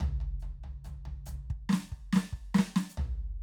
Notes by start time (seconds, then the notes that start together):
0.01 floor tom, hi-hat pedal, high tom
0.21 floor tom, high tom
0.40 floor tom, hi-hat pedal, high tom
0.64 floor tom, high tom
0.85 floor tom, hi-hat pedal, high tom
1.06 floor tom, high tom
1.26 floor tom, hi-hat pedal, high tom
1.50 kick
1.70 snare
1.73 snare
1.92 kick
2.13 snare
2.16 snare
2.33 kick
2.55 snare
2.59 snare
2.76 snare
2.90 hi-hat pedal
2.98 floor tom